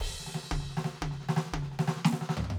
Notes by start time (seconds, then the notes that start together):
0.01 kick, crash
0.10 snare
0.20 snare
0.27 snare
0.35 snare
0.44 snare
0.52 kick, high tom
0.61 snare
0.71 snare
0.78 snare
0.85 snare
0.94 snare
1.02 kick, high tom
1.12 snare
1.21 snare
1.30 snare
1.37 snare
1.46 snare
1.53 kick, high tom
1.63 snare
1.72 snare
1.80 snare
1.88 snare
1.97 snare
2.06 snare
2.13 snare
2.22 snare
2.30 snare
2.38 floor tom
2.45 floor tom
2.49 floor tom
2.51 floor tom